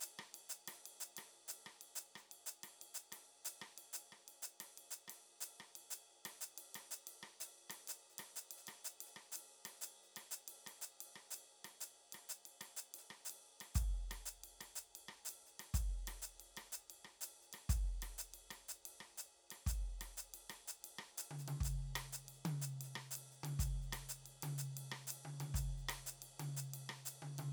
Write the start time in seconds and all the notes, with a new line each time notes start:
0.01 hi-hat pedal, ride
0.19 cross-stick
0.35 ride
0.50 hi-hat pedal
0.68 cross-stick, ride
0.73 hi-hat pedal
0.86 ride
1.01 hi-hat pedal
1.17 cross-stick, ride
1.48 hi-hat pedal, ride
1.67 cross-stick
1.82 ride
1.96 hi-hat pedal, ride
2.16 cross-stick, hi-hat pedal
2.32 ride
2.47 hi-hat pedal
2.64 cross-stick, ride
2.82 ride
2.95 hi-hat pedal
3.12 cross-stick, ride
3.45 hi-hat pedal, ride
3.62 cross-stick
3.78 ride
3.94 hi-hat pedal, ride
4.13 cross-stick
4.28 ride
4.43 hi-hat pedal
4.61 cross-stick, ride
4.78 ride
4.91 hi-hat pedal
5.08 cross-stick, ride
5.13 hi-hat pedal
5.41 hi-hat pedal, ride
5.60 cross-stick
5.76 ride
5.91 hi-hat pedal, ride
6.26 cross-stick, ride
6.41 hi-hat pedal
6.58 ride
6.75 cross-stick, ride
6.91 hi-hat pedal
7.08 ride
7.23 cross-stick
7.41 hi-hat pedal, ride
7.70 cross-stick, ride
7.88 hi-hat pedal, ride
8.10 hi-hat pedal
8.19 cross-stick, ride
8.36 hi-hat pedal
8.51 ride
8.58 hi-hat pedal
8.68 cross-stick, ride
8.85 hi-hat pedal
9.01 ride
9.07 hi-hat pedal
9.17 cross-stick
9.32 hi-hat pedal, ride
9.66 cross-stick, ride
9.82 hi-hat pedal, ride
10.03 hi-hat pedal
10.17 cross-stick, ride
10.32 hi-hat pedal
10.48 ride
10.67 cross-stick, ride
10.82 hi-hat pedal
11.01 ride
11.16 cross-stick
11.31 hi-hat pedal, ride
11.65 cross-stick, ride
11.81 hi-hat pedal, ride
12.13 cross-stick, ride
12.30 hi-hat pedal
12.46 ride
12.61 cross-stick, ride
12.77 hi-hat pedal
12.95 hi-hat pedal, ride
13.11 cross-stick
13.26 hi-hat pedal
13.30 ride
13.61 cross-stick, ride
13.75 kick, hi-hat pedal, ride
14.11 cross-stick, ride
14.26 hi-hat pedal
14.44 ride
14.61 cross-stick, ride
14.76 hi-hat pedal
14.96 ride
15.09 cross-stick
15.26 hi-hat pedal
15.30 ride
15.47 hi-hat pedal
15.60 cross-stick, ride
15.74 kick, hi-hat pedal, ride
16.08 cross-stick, ride
16.22 hi-hat pedal
16.40 ride
16.57 cross-stick, ride
16.73 hi-hat pedal
16.90 ride
17.05 cross-stick
17.21 hi-hat pedal, ride
17.42 hi-hat pedal
17.53 cross-stick, ride
17.70 kick, hi-hat pedal, ride
18.03 cross-stick, ride
18.19 hi-hat pedal
18.34 ride
18.51 cross-stick, ride
18.69 hi-hat pedal
18.86 ride
19.01 cross-stick
19.18 hi-hat pedal, ride
19.51 cross-stick, ride
19.67 kick, hi-hat pedal, ride
20.02 cross-stick, ride
20.18 hi-hat pedal
20.34 ride
20.50 cross-stick, ride
20.68 hi-hat pedal
20.85 ride
20.99 cross-stick
21.18 hi-hat pedal, ride
21.31 high tom
21.39 hi-hat pedal
21.48 high tom, ride
21.61 kick, ride
21.65 hi-hat pedal
21.96 cross-stick, ride
22.13 hi-hat pedal
22.29 ride
22.34 hi-hat pedal
22.46 high tom, ride
22.62 hi-hat pedal
22.81 hi-hat pedal, ride
22.96 cross-stick
23.11 hi-hat pedal
23.16 ride
23.32 hi-hat pedal
23.44 high tom, ride
23.60 kick, hi-hat pedal, ride
23.82 hi-hat pedal
23.93 cross-stick, ride
24.09 hi-hat pedal
24.26 ride
24.43 high tom, ride
24.59 hi-hat pedal
24.77 ride
24.92 cross-stick
25.07 hi-hat pedal, ride
25.25 high tom
25.41 high tom, ride
25.55 kick, hi-hat pedal, ride
25.78 hi-hat pedal
25.89 cross-stick, ride
26.07 hi-hat pedal
26.23 ride
26.40 high tom, ride
26.57 hi-hat pedal
26.74 ride
26.90 cross-stick
27.06 hi-hat pedal, ride
27.23 high tom
27.39 high tom, ride